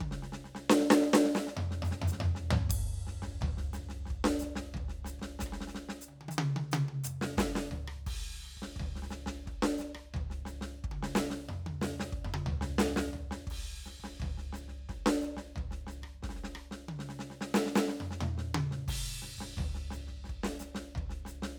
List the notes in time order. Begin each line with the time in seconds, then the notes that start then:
0.01 kick, high tom
0.11 snare
0.23 snare
0.32 snare
0.45 snare
0.55 snare
0.70 snare
0.80 snare
0.90 snare
1.02 snare
1.13 snare
1.24 snare
1.35 snare
1.47 snare
1.57 mid tom
1.71 snare
1.82 hi-hat pedal, mid tom
1.91 snare
2.02 mid tom
2.08 hi-hat pedal
2.12 snare
2.20 mid tom
2.35 snare
2.51 floor tom
2.70 kick, ride
3.07 snare
3.22 kick, snare
3.41 kick, floor tom
3.57 snare
3.73 snare, hi-hat pedal
3.89 kick, snare
4.06 snare
4.10 kick
4.24 snare
4.39 snare, hi-hat pedal
4.56 kick, snare
4.74 kick, floor tom
4.88 snare
5.05 snare, hi-hat pedal
5.19 kick, snare
5.39 kick, snare, hi-hat pedal
5.46 cross-stick
5.53 snare
5.61 snare
5.68 snare, hi-hat pedal
5.75 snare
5.89 snare
6.01 hi-hat pedal
6.08 high tom
6.21 high tom
6.29 hi-hat pedal, high tom
6.38 high tom
6.56 high tom
6.72 hi-hat pedal, high tom
6.88 high tom
7.04 hi-hat pedal, mid tom
7.21 snare
7.37 kick, snare
7.55 snare
7.71 floor tom
7.88 cross-stick
8.07 kick, crash
8.44 cross-stick
8.57 kick
8.62 snare
8.76 kick, floor tom
8.96 snare
9.02 snare
9.09 snare, hi-hat pedal
9.26 kick, snare
9.46 kick, snare
9.62 snare
9.78 snare, hi-hat pedal
9.95 kick, cross-stick
10.14 kick, floor tom
10.30 snare
10.46 snare, hi-hat pedal
10.61 snare
10.84 kick
10.92 kick, high tom
11.03 snare
11.15 snare
11.30 snare
11.49 mid tom
11.66 high tom
11.82 snare
12.00 snare
12.12 kick
12.19 kick
12.25 mid tom
12.34 high tom
12.46 floor tom
12.61 snare
12.79 snare
12.96 snare
13.13 floor tom
13.31 snare
13.47 kick, crash
13.84 snare, hi-hat pedal
14.00 kick
14.04 snare
14.20 kick, floor tom
14.38 snare
14.53 snare, hi-hat pedal
14.68 kick, snare
14.89 kick, snare
15.06 snare
15.22 snare, hi-hat pedal
15.37 kick, snare
15.56 kick, floor tom
15.71 snare
15.87 snare, hi-hat pedal
16.02 kick, cross-stick
16.23 kick, snare
16.29 snare
16.35 snare
16.44 snare
16.55 cross-stick
16.71 snare
16.89 high tom
16.99 snare
17.09 snare
17.19 snare
17.30 snare
17.41 snare
17.54 snare
17.66 snare
17.76 snare
17.88 snare
18.00 mid tom
18.11 snare
18.21 mid tom
18.38 snare
18.55 high tom
18.71 snare
18.88 kick, snare, crash
18.97 snare
19.22 snare
19.38 kick, snare
19.57 kick, floor tom
19.75 snare
19.91 snare, hi-hat pedal
20.07 kick, snare
20.24 snare
20.29 kick
20.44 snare
20.59 snare, hi-hat pedal
20.75 kick, snare
20.95 kick, floor tom
21.10 snare
21.25 snare, hi-hat pedal
21.42 snare